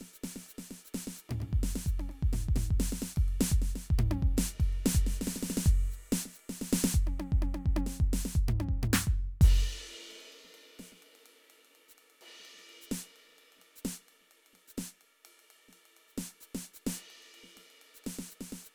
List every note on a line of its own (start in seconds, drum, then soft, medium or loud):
0.01 snare soft
0.01 ride soft
0.13 hi-hat pedal medium
0.24 snare medium
0.24 ride medium
0.36 snare soft
0.46 hi-hat pedal medium
0.46 ride medium
0.58 snare soft
0.58 ride medium
0.71 snare soft
0.71 ride medium
0.85 hi-hat pedal medium
0.94 snare medium
0.94 ride medium
1.07 snare medium
1.16 hi-hat pedal medium
1.16 ride medium
1.29 floor tom medium
1.29 high tom medium
1.40 floor tom medium
1.40 high tom soft
1.53 kick medium
1.63 snare medium
1.63 ride medium
1.76 snare medium
1.86 kick medium
1.86 hi-hat pedal medium
1.86 ride medium
2.00 high tom medium
2.00 ride soft
2.09 high tom soft
2.09 ride soft
2.23 kick medium
2.33 snare medium
2.33 floor tom medium
2.49 kick medium
2.56 snare medium
2.56 floor tom medium
2.71 kick medium
2.80 snare medium
2.80 ride medium
2.92 snare medium
3.02 snare medium
3.16 kick medium
3.16 ride medium
3.28 ride medium
3.41 snare loud
3.52 kick medium
3.52 ride medium
3.62 snare soft
3.76 snare soft
3.90 kick medium
3.99 floor tom loud
4.11 high tom loud
4.23 kick medium
4.37 snare loud
4.37 ride soft
4.60 kick medium
4.60 ride medium
4.73 ride soft
4.86 snare loud
4.95 kick medium
4.95 ride soft
5.07 snare medium
5.21 snare medium
5.27 snare medium
5.36 snare medium
5.43 snare medium
5.50 snare medium
5.57 snare medium
5.66 kick medium
5.66 crash medium
5.91 hi-hat pedal medium
6.12 snare loud
6.12 ride medium
6.25 snare soft
6.33 hi-hat pedal medium
6.39 ride medium
6.49 snare medium
6.61 snare medium
6.73 snare loud
6.84 snare loud
6.94 kick medium
7.07 high tom medium
7.20 high tom loud
7.32 kick medium
7.42 high tom medium
7.54 high tom medium
7.66 kick medium
7.76 high tom loud
7.87 snare medium
8.00 kick medium
8.13 snare medium
8.25 snare medium
8.35 kick medium
8.48 floor tom loud
8.60 high tom loud
8.69 kick medium
8.83 floor tom loud
8.93 snare loud
9.07 kick medium
9.41 open hi-hat medium
9.41 kick loud
9.41 ride loud
9.91 ride soft
10.09 snare soft
10.09 ride medium
10.12 snare soft
10.21 ride medium
10.32 ride soft
10.45 snare soft
10.54 ride medium
10.79 snare soft
10.79 ride medium
10.92 snare soft
11.02 ride medium
11.15 ride medium
11.26 ride medium
11.50 ride medium
11.65 ride soft
11.75 ride soft
11.89 hi-hat pedal medium
11.98 ride medium
12.10 ride soft
12.21 ride medium
12.39 snare soft
12.45 ride medium
12.54 snare soft
12.58 snare soft
12.58 ride soft
12.81 hi-hat pedal medium
12.91 snare medium
12.91 ride medium
13.05 ride soft
13.16 ride soft
13.28 snare soft
13.32 snare soft
13.38 ride medium
13.52 ride soft
13.57 snare soft
13.59 snare soft
13.59 ride medium
13.76 hi-hat pedal medium
13.85 snare medium
13.85 ride medium
13.98 ride soft
14.08 ride medium
14.21 snare soft
14.31 ride medium
14.46 ride soft
14.53 snare soft
14.53 ride medium
14.68 hi-hat pedal medium
14.78 snare medium
14.78 ride medium
14.85 hi-hat pedal soft
14.91 ride soft
15.01 ride medium
15.25 ride medium
15.39 ride medium
15.50 ride medium
15.69 snare soft
15.73 ride medium
15.86 ride medium
15.97 ride medium
16.08 hi-hat pedal soft
16.18 snare medium
16.18 ride medium
16.31 ride medium
16.40 hi-hat pedal medium
16.40 ride medium
16.55 snare medium
16.65 ride soft
16.74 hi-hat pedal medium
16.74 ride soft
16.87 snare medium
16.87 ride medium
16.95 hi-hat pedal soft
17.10 ride medium
17.23 ride soft
17.34 ride medium
17.44 snare soft
17.57 snare soft
17.57 ride medium
17.70 ride soft
17.82 ride medium
17.94 hi-hat pedal medium
18.04 snare medium
18.04 ride medium
18.17 snare medium
18.17 ride soft
18.29 hi-hat pedal medium
18.29 ride medium
18.41 snare soft
18.50 snare soft
18.50 ride medium
18.63 hi-hat pedal medium
18.63 ride medium